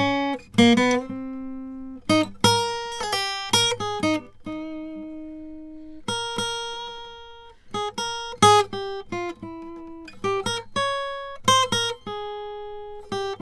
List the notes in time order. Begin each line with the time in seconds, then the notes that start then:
0.00 C#4
0.60 A#3
0.79 B3
1.12 C4
2.11 D#4
2.46 A#4
3.02 G#4
3.14 G4
3.55 A#4
3.82 G#4
4.05 D#4
4.48 D#4
6.10 A#4
6.38 A#4
7.76 G#4
8.00 A#4
8.44 G#4
8.75 G4
9.14 F4
9.45 E4
10.26 G4
10.48 A#4
10.78 C#5
11.50 C5
11.74 A#4
12.09 G#4
13.14 G4